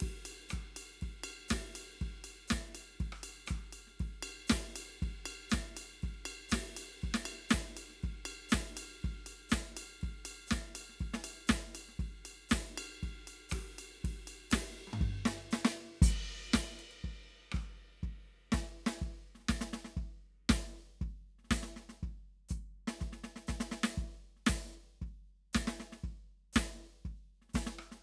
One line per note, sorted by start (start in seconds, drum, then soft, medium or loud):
0.01 kick medium
0.01 ride loud
0.26 ride bell medium
0.50 cross-stick medium
0.50 hi-hat pedal medium
0.50 ride soft
0.54 kick soft
0.77 ride bell medium
1.02 kick soft
1.02 ride soft
1.24 ride bell loud
1.49 kick soft
1.49 snare medium
1.49 hi-hat pedal loud
1.49 ride loud
1.76 ride bell medium
2.02 kick soft
2.02 ride soft
2.25 ride bell medium
2.48 snare loud
2.48 hi-hat pedal medium
2.48 ride soft
2.53 kick soft
2.75 ride bell medium
2.90 snare soft
3.01 kick medium
3.01 ride soft
3.13 cross-stick medium
3.24 ride bell medium
3.47 cross-stick medium
3.47 hi-hat pedal medium
3.47 ride soft
3.51 kick medium
3.73 ride bell medium
3.88 snare soft
4.00 kick medium
4.00 ride soft
4.23 ride bell loud
4.48 snare loud
4.48 hi-hat pedal medium
4.48 ride medium
4.53 kick medium
4.76 ride bell loud
5.03 kick medium
5.03 ride soft
5.26 ride bell loud
5.50 kick medium
5.50 snare loud
5.50 hi-hat pedal medium
5.50 ride soft
5.77 ride bell medium
6.03 kick soft
6.03 ride soft
6.26 ride bell loud
6.49 kick soft
6.49 snare loud
6.49 hi-hat pedal medium
6.49 ride loud
6.77 ride bell medium
7.03 kick soft
7.03 ride soft
7.15 snare medium
7.26 ride bell loud
7.50 snare loud
7.50 hi-hat pedal medium
7.50 ride medium
7.54 kick soft
7.77 ride bell medium
7.90 snare soft
8.04 kick medium
8.04 ride soft
8.26 ride bell loud
8.50 snare loud
8.50 hi-hat pedal loud
8.50 ride medium
8.55 kick medium
8.78 ride bell loud
9.03 kick medium
9.03 ride soft
9.27 ride bell medium
9.50 kick soft
9.50 snare loud
9.50 hi-hat pedal medium
9.50 ride soft
9.77 ride bell loud
10.02 kick soft
10.02 ride soft
10.26 ride bell loud
10.48 snare loud
10.48 hi-hat pedal medium
10.53 kick soft
10.76 ride bell medium
10.90 snare soft
11.00 kick soft
11.00 ride soft
11.14 snare medium
11.25 ride bell loud
11.48 kick medium
11.48 snare loud
11.48 hi-hat pedal medium
11.76 ride bell medium
11.89 snare soft
11.96 kick medium
11.96 hi-hat pedal soft
12.01 ride soft
12.26 ride bell medium
12.50 kick medium
12.50 snare loud
12.50 hi-hat pedal medium
12.50 ride medium
12.78 ride bell loud
13.04 kick soft
13.04 ride soft
13.28 ride bell medium
13.50 kick soft
13.50 cross-stick medium
13.50 hi-hat pedal loud
13.50 ride loud
13.79 ride bell medium
14.05 kick medium
14.05 ride medium
14.28 ride bell medium
14.51 kick soft
14.51 snare loud
14.51 hi-hat pedal loud
14.51 ride loud
14.88 high tom soft
14.94 floor tom loud
15.02 kick medium
15.26 snare loud
15.52 snare loud
15.52 hi-hat pedal loud
15.65 snare loud
16.02 open hi-hat loud
16.02 kick loud
16.02 crash medium
16.53 kick soft
16.53 snare loud
16.53 hi-hat pedal soft
16.80 closed hi-hat soft
16.92 closed hi-hat soft
17.05 kick soft
17.52 kick medium
17.52 cross-stick medium
17.57 cross-stick soft
18.04 kick soft
18.53 kick medium
18.53 snare loud
18.87 snare loud
19.02 kick soft
19.36 snare soft
19.41 snare soft
19.49 kick medium
19.49 snare medium
19.62 snare medium
19.74 snare medium
19.85 snare soft
19.97 kick soft
20.50 kick medium
20.50 snare loud
21.02 kick medium
21.39 snare soft
21.45 snare soft
21.51 kick medium
21.51 snare loud
21.51 hi-hat pedal medium
21.63 snare soft
21.77 snare soft
21.90 snare soft
22.03 kick soft
22.49 kick soft
22.49 hi-hat pedal medium
22.88 snare medium
23.01 kick soft
23.01 snare soft
23.13 snare soft
23.24 snare soft
23.36 snare soft
23.48 kick soft
23.48 snare medium
23.48 hi-hat pedal medium
23.61 snare medium
23.72 snare medium
23.84 snare loud
23.98 kick medium
24.30 snare soft
24.37 snare soft
24.41 snare soft
24.47 kick medium
24.47 snare loud
24.47 hi-hat pedal loud
25.02 kick soft
25.54 kick soft
25.54 snare loud
25.54 hi-hat pedal loud
25.68 snare medium
25.80 snare soft
25.93 snare soft
26.00 hi-hat pedal soft
26.04 kick soft
26.54 kick medium
26.54 snare loud
26.54 hi-hat pedal medium
27.06 kick soft
27.42 snare soft
27.50 snare soft
27.54 kick medium
27.54 snare medium
27.54 hi-hat pedal medium
27.67 snare medium
27.79 cross-stick medium
27.92 snare soft